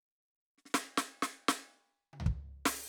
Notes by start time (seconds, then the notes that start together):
0.58 snare
0.65 snare
0.69 snare
0.74 snare
0.97 snare
1.22 snare
1.48 snare
2.13 high tom
2.20 floor tom
2.26 kick
2.65 open hi-hat, snare